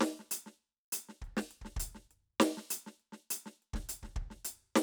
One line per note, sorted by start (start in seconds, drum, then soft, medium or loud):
0.01 snare loud
0.20 snare soft
0.31 closed hi-hat loud
0.46 snare soft
0.93 closed hi-hat loud
1.09 snare soft
1.22 kick soft
1.22 closed hi-hat soft
1.37 snare medium
1.51 closed hi-hat soft
1.62 kick soft
1.62 snare soft
1.77 closed hi-hat loud
1.77 kick medium
1.95 snare soft
2.11 closed hi-hat soft
2.40 snare loud
2.57 snare soft
2.71 closed hi-hat loud
2.87 snare soft
3.00 closed hi-hat soft
3.13 snare soft
3.31 closed hi-hat loud
3.46 snare soft
3.62 closed hi-hat soft
3.74 kick medium
3.74 snare soft
3.89 closed hi-hat loud
4.03 kick soft
4.03 snare soft
4.16 kick medium
4.16 closed hi-hat soft
4.31 snare soft
4.45 closed hi-hat loud
4.76 snare loud